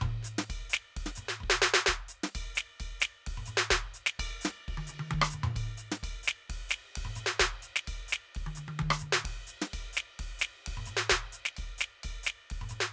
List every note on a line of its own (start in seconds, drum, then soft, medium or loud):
0.01 kick soft
0.01 mid tom loud
0.22 snare soft
0.22 hi-hat pedal medium
0.38 snare medium
0.50 kick soft
0.50 ride bell medium
0.69 snare loud
0.69 hi-hat pedal medium
0.96 kick soft
0.96 ride medium
1.04 kick soft
1.04 snare medium
1.15 hi-hat pedal medium
1.15 mid tom medium
1.28 snare medium
1.40 kick soft
1.40 mid tom medium
1.50 snare loud
1.62 snare loud
1.62 hi-hat pedal medium
1.74 snare loud
1.86 kick soft
1.86 snare loud
2.08 hi-hat pedal medium
2.23 snare medium
2.35 kick soft
2.35 ride bell medium
2.55 snare medium
2.55 hi-hat pedal medium
2.80 kick soft
2.80 ride bell medium
3.00 snare loud
3.00 hi-hat pedal medium
3.26 kick soft
3.26 ride medium
3.33 kick soft
3.37 mid tom medium
3.45 hi-hat pedal medium
3.45 mid tom medium
3.57 snare loud
3.70 kick soft
3.70 snare loud
3.77 kick soft
3.94 hi-hat pedal medium
4.06 snare loud
4.19 kick soft
4.19 ride bell loud
4.41 snare medium
4.41 hi-hat pedal medium
4.68 kick soft
4.68 ride soft
4.73 kick soft
4.73 high tom medium
4.87 hi-hat pedal medium
4.87 high tom soft
4.99 high tom medium
5.10 kick soft
5.10 high tom loud
5.21 cross-stick loud
5.30 hi-hat pedal medium
5.30 mid tom medium
5.43 mid tom loud
5.56 kick soft
5.56 ride bell medium
5.77 hi-hat pedal medium
5.91 snare medium
6.03 kick soft
6.03 ride bell medium
6.08 kick soft
6.23 hi-hat pedal medium
6.27 snare loud
6.49 kick soft
6.49 ride medium
6.56 kick soft
6.69 snare medium
6.69 hi-hat pedal medium
6.95 kick soft
6.95 ride loud
7.05 mid tom medium
7.15 hi-hat pedal medium
7.15 mid tom medium
7.26 snare medium
7.39 kick soft
7.39 snare loud
7.46 kick soft
7.62 hi-hat pedal medium
7.76 snare medium
7.87 kick soft
7.87 ride bell medium
8.08 hi-hat pedal medium
8.12 snare medium
8.35 kick soft
8.35 ride medium
8.42 kick soft
8.46 high tom medium
8.55 hi-hat pedal medium
8.55 high tom soft
8.68 high tom medium
8.79 kick soft
8.79 high tom loud
8.90 cross-stick loud
8.98 hi-hat pedal medium
8.98 mid tom medium
9.12 snare loud
9.24 kick soft
9.24 ride medium
9.47 hi-hat pedal medium
9.61 snare medium
9.73 kick soft
9.73 ride bell medium
9.93 snare medium
9.93 hi-hat pedal medium
10.19 kick soft
10.19 ride medium
10.39 snare medium
10.39 hi-hat pedal medium
10.66 kick soft
10.66 ride loud
10.77 mid tom medium
10.85 hi-hat pedal medium
10.97 snare medium
11.09 kick soft
11.09 snare loud
11.21 mid tom soft
11.32 hi-hat pedal medium
11.45 snare medium
11.56 kick soft
11.56 ride bell medium
11.64 kick soft
11.78 snare medium
11.78 hi-hat pedal medium
12.03 kick soft
12.03 ride bell medium
12.23 snare medium
12.23 hi-hat pedal medium
12.50 kick soft
12.50 ride medium
12.61 mid tom medium
12.69 hi-hat pedal medium
12.69 mid tom medium
12.80 snare medium